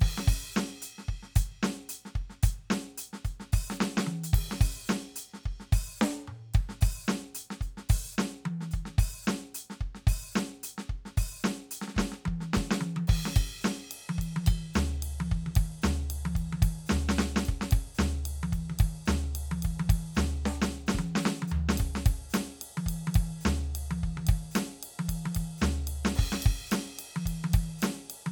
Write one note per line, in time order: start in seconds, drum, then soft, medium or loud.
0.01 kick loud
0.01 crash loud
0.18 snare medium
0.28 open hi-hat loud
0.28 kick loud
0.53 snare loud
0.53 hi-hat pedal medium
0.82 closed hi-hat loud
0.99 snare soft
1.09 kick medium
1.09 closed hi-hat soft
1.23 snare soft
1.36 closed hi-hat loud
1.36 kick loud
1.63 snare loud
1.89 closed hi-hat loud
2.05 snare soft
2.15 kick medium
2.15 closed hi-hat soft
2.30 snare soft
2.43 closed hi-hat loud
2.43 kick loud
2.70 snare loud
2.98 closed hi-hat loud
3.13 snare medium
3.25 closed hi-hat medium
3.25 kick medium
3.40 snare medium
3.53 open hi-hat loud
3.53 kick loud
3.70 snare medium
3.70 hi-hat pedal medium
3.81 snare loud
3.97 snare loud
4.07 high tom loud
4.24 closed hi-hat loud
4.34 kick loud
4.34 crash loud
4.51 snare medium
4.61 open hi-hat loud
4.61 kick loud
4.86 snare loud
4.86 hi-hat pedal medium
5.16 closed hi-hat loud
5.34 snare soft
5.44 kick medium
5.44 closed hi-hat soft
5.60 snare soft
5.73 open hi-hat loud
5.73 kick loud
5.98 snare loud
5.98 hi-hat pedal medium
6.28 mid tom medium
6.54 kick loud
6.54 closed hi-hat medium
6.69 snare medium
6.81 open hi-hat loud
6.81 kick loud
7.04 hi-hat pedal medium
7.08 snare loud
7.35 closed hi-hat loud
7.51 snare medium
7.61 closed hi-hat soft
7.61 kick medium
7.77 snare medium
7.89 open hi-hat loud
7.89 kick loud
8.12 hi-hat pedal medium
8.18 snare loud
8.46 high tom loud
8.61 snare soft
8.71 closed hi-hat medium
8.71 kick medium
8.86 snare medium
8.99 open hi-hat loud
8.99 kick loud
9.23 hi-hat pedal medium
9.27 snare loud
9.55 closed hi-hat loud
9.70 snare medium
9.81 kick medium
9.81 closed hi-hat soft
9.95 snare soft
10.07 open hi-hat loud
10.07 kick loud
10.32 snare loud
10.32 hi-hat pedal medium
10.64 closed hi-hat loud
10.78 snare medium
10.90 kick medium
11.06 snare soft
11.17 open hi-hat loud
11.17 kick loud
11.40 hi-hat pedal medium
11.44 snare loud
11.71 closed hi-hat loud
11.82 snare medium
11.88 snare medium
11.95 kick medium
11.95 snare soft
11.98 snare loud
12.12 snare medium
12.26 kick medium
12.26 high tom loud
12.41 snare soft
12.54 kick medium
12.54 snare loud
12.54 hi-hat pedal medium
12.71 snare loud
12.81 high tom loud
12.96 high tom loud
13.08 kick loud
13.08 crash loud
13.26 snare medium
13.36 kick loud
13.36 ride bell loud
13.61 snare loud
13.61 hi-hat pedal medium
13.91 ride loud
14.09 high tom loud
14.18 kick medium
14.18 ride medium
14.36 high tom loud
14.47 kick loud
14.47 ride bell loud
14.74 snare loud
14.74 floor tom loud
14.74 hi-hat pedal medium
15.03 ride loud
15.20 high tom loud
15.32 kick medium
15.46 high tom loud
15.56 kick loud
15.56 ride loud
15.82 snare loud
15.82 floor tom loud
15.82 hi-hat pedal medium
16.10 ride loud
16.25 high tom loud
16.35 kick medium
16.35 ride medium
16.53 high tom loud
16.62 kick loud
16.62 ride loud
16.87 snare loud
16.87 hi-hat pedal medium
16.91 floor tom loud
17.09 snare loud
17.19 snare loud
17.36 snare loud
17.46 kick medium
17.46 ride medium
17.61 snare loud
17.71 kick loud
17.71 ride loud
17.95 snare loud
17.95 floor tom loud
17.95 hi-hat pedal medium
18.26 ride loud
18.43 high tom loud
18.53 kick medium
18.53 ride medium
18.70 high tom loud
18.79 kick loud
18.79 ride loud
19.06 snare loud
19.06 floor tom loud
19.06 hi-hat pedal medium
19.35 ride loud
19.52 high tom loud
19.63 kick medium
19.63 ride loud
19.80 high tom loud
19.90 kick loud
19.90 ride loud
20.15 snare loud
20.15 floor tom loud
20.15 hi-hat pedal medium
20.46 snare medium
20.62 kick soft
20.62 snare loud
20.62 hi-hat pedal medium
20.71 high tom soft
20.87 snare loud
20.87 hi-hat pedal medium
20.95 kick medium
20.99 high tom loud
21.16 snare loud
21.21 hi-hat pedal medium
21.26 snare loud
21.42 high tom loud
21.48 floor tom loud
21.48 hi-hat pedal medium
21.69 snare loud
21.69 hi-hat pedal soft
21.78 kick medium
21.78 ride loud
21.95 snare medium
22.06 kick loud
22.06 ride loud
22.30 snare loud
22.30 hi-hat pedal medium
22.34 ride loud
22.62 ride loud
22.77 high tom loud
22.86 kick medium
22.86 ride loud
23.07 high tom loud
23.15 kick loud
23.15 ride loud
23.41 hi-hat pedal medium
23.45 snare loud
23.45 floor tom loud
23.75 ride loud
23.91 high tom loud
24.04 kick medium
24.17 high tom loud
24.27 kick loud
24.27 ride loud
24.51 hi-hat pedal medium
24.55 snare loud
24.55 ride loud
24.83 ride loud
24.99 high tom loud
25.09 kick medium
25.09 ride loud
25.26 high tom loud
25.35 kick medium
25.35 ride loud
25.58 snare loud
25.58 floor tom loud
25.58 hi-hat pedal medium
25.87 ride loud
26.05 snare loud
26.16 kick loud
26.16 crash loud
26.32 snare loud
26.42 kick loud
26.42 ride loud
26.67 hi-hat pedal medium
26.72 snare loud
26.72 ride loud
26.99 ride loud
27.16 high tom loud
27.26 kick medium
27.26 ride loud
27.44 high tom loud
27.54 kick loud
27.54 ride loud
27.79 hi-hat pedal medium
27.79 ride loud
27.83 snare loud
28.10 ride loud
28.26 high tom loud